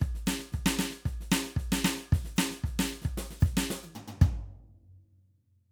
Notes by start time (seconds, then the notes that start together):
0.01 kick, snare
0.15 snare
0.27 snare, hi-hat pedal
0.40 snare
0.53 kick, snare
0.66 snare
0.79 snare, hi-hat pedal
0.91 snare
1.06 kick, snare
1.21 snare
1.31 snare, hi-hat pedal
1.45 snare
1.57 kick, snare
1.72 snare
1.85 snare, hi-hat pedal
1.97 snare
2.13 kick, snare
2.25 snare
2.37 snare, hi-hat pedal
2.51 snare
2.64 kick, snare
2.79 snare
2.87 hi-hat pedal
2.93 snare
3.02 kick, snare
3.18 snare
3.31 snare
3.41 kick, hi-hat pedal
3.45 snare
3.57 snare
3.71 snare
3.83 high tom
3.96 floor tom
4.08 floor tom
4.22 kick, floor tom